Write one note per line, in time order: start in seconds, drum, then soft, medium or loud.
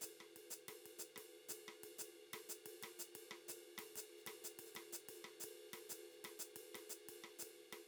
0.01 hi-hat pedal medium
0.01 ride soft
0.20 cross-stick soft
0.36 ride soft
0.50 hi-hat pedal medium
0.68 cross-stick soft
0.68 ride medium
0.86 ride soft
0.99 hi-hat pedal medium
1.16 cross-stick soft
1.16 ride medium
1.21 hi-hat pedal soft
1.49 hi-hat pedal medium
1.49 ride medium
1.68 cross-stick soft
1.83 ride soft
1.98 hi-hat pedal medium
1.98 ride soft
2.33 cross-stick medium
2.33 ride medium
2.49 hi-hat pedal medium
2.66 ride medium
2.83 cross-stick medium
2.83 ride medium
2.99 hi-hat pedal medium
3.15 ride medium
3.31 cross-stick medium
3.48 hi-hat pedal medium
3.48 ride medium
3.78 cross-stick medium
3.78 ride medium
3.96 hi-hat pedal medium
3.96 ride soft
4.18 hi-hat pedal soft
4.26 cross-stick medium
4.26 ride medium
4.44 hi-hat pedal medium
4.59 ride medium
4.66 hi-hat pedal soft
4.75 cross-stick medium
4.75 ride soft
4.93 hi-hat pedal medium
5.09 ride medium
5.14 hi-hat pedal soft
5.24 cross-stick soft
5.40 hi-hat pedal medium
5.40 ride medium
5.73 cross-stick soft
5.73 ride medium
5.89 hi-hat pedal medium
5.89 ride soft
6.11 hi-hat pedal soft
6.24 cross-stick soft
6.24 ride soft
6.39 hi-hat pedal medium
6.56 ride medium
6.74 cross-stick soft
6.74 ride soft
6.89 hi-hat pedal medium
7.09 ride medium
7.24 cross-stick soft
7.39 hi-hat pedal medium
7.39 ride soft
7.72 cross-stick soft
7.72 ride soft